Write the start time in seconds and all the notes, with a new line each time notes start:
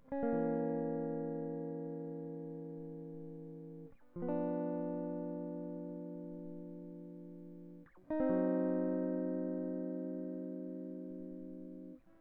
0.13 C#4
0.24 A#3
0.34 E3
4.17 F3
4.23 B3
4.29 D4
8.11 D#4
8.21 C4
8.31 F#3